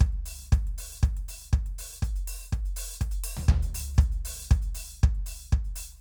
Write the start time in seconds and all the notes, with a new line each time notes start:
0.01 kick, closed hi-hat
0.13 closed hi-hat
0.26 open hi-hat
0.42 hi-hat pedal, open hi-hat
0.53 kick, closed hi-hat
0.67 closed hi-hat
0.78 open hi-hat
0.93 open hi-hat
0.98 hi-hat pedal
1.03 kick, closed hi-hat
1.17 closed hi-hat
1.29 open hi-hat
1.42 open hi-hat
1.47 hi-hat pedal
1.53 kick, closed hi-hat
1.67 closed hi-hat
1.79 open hi-hat
1.93 hi-hat pedal, open hi-hat
2.03 closed hi-hat, kick
2.16 closed hi-hat
2.28 open hi-hat
2.41 open hi-hat
2.45 hi-hat pedal
2.53 kick, closed hi-hat
2.66 closed hi-hat
2.77 open hi-hat
2.91 open hi-hat
2.96 hi-hat pedal
3.01 kick, closed hi-hat
3.12 closed hi-hat
3.24 open hi-hat
3.37 floor tom
3.44 hi-hat pedal
3.49 kick, floor tom
3.63 closed hi-hat
3.75 open hi-hat
3.88 open hi-hat
3.95 kick, hi-hat pedal
4.00 closed hi-hat
4.12 closed hi-hat
4.21 kick
4.25 open hi-hat
4.39 open hi-hat
4.46 hi-hat pedal
4.51 closed hi-hat, kick
4.62 closed hi-hat
4.75 open hi-hat
4.89 open hi-hat
4.99 hi-hat pedal
5.03 closed hi-hat, kick
5.15 closed hi-hat
5.26 open hi-hat
5.42 open hi-hat
5.49 kick, hi-hat pedal
5.65 closed hi-hat
5.76 open hi-hat
5.93 open hi-hat
5.97 hi-hat pedal